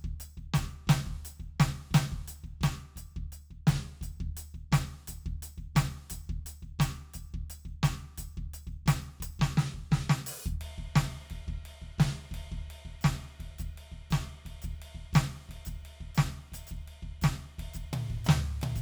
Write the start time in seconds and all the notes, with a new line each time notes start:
0.01 kick, snare
0.05 snare
0.20 percussion
0.37 kick
0.54 kick, snare, percussion
0.87 kick, snare, percussion
1.07 kick
1.25 percussion
1.40 kick
1.60 kick, snare, percussion
1.91 kick, snare, percussion
2.12 kick
2.28 percussion
2.44 kick
2.61 kick, snare, percussion
2.96 kick, percussion
3.17 kick
3.32 percussion
3.51 kick
3.67 kick, snare, percussion
4.02 kick, percussion
4.21 kick
4.37 percussion
4.55 kick
4.72 kick, snare, percussion
5.08 kick, percussion
5.26 kick
5.43 percussion
5.58 kick
5.76 kick, snare, percussion
6.10 kick, percussion
6.30 kick
6.46 percussion
6.63 kick
6.79 kick, snare, percussion
6.97 cross-stick
7.14 kick, percussion
7.34 kick
7.50 percussion
7.65 kick
7.83 kick, snare, percussion
8.03 snare
8.18 kick, percussion
8.37 kick
8.54 percussion
8.67 kick
8.86 kick, snare, percussion
9.06 snare
9.20 kick, percussion
9.40 kick, snare
9.58 snare
9.74 kick
9.92 kick, snare
10.10 snare
10.27 percussion
10.45 kick, percussion
10.61 ride
10.78 kick
10.96 kick, snare, ride
11.11 snare
11.30 kick, ride
11.47 kick, snare
11.66 ride
11.82 kick
11.99 kick, snare, ride
12.15 snare
12.32 kick, ride
12.52 kick
12.71 ride
12.85 kick
13.02 kick, snare, percussion
13.07 ride
13.23 snare
13.40 kick, ride
13.59 kick, percussion
13.78 ride
13.92 kick
14.11 kick, snare, ride, percussion
14.46 kick, ride
14.62 kick, percussion
14.82 ride
14.95 kick
15.13 kick, snare, ride, percussion
15.49 kick, ride
15.66 kick, percussion
15.85 ride
16.01 kick
16.15 kick, snare, percussion
16.19 ride
16.52 kick, ride, percussion
16.67 percussion
16.71 kick
16.88 ride
17.03 kick
17.22 kick, snare, ride, percussion
17.59 kick, ride
17.74 kick, percussion
17.93 high tom, ride
18.10 kick
18.25 floor tom, percussion
18.29 snare
18.62 high tom, ride
18.76 kick, percussion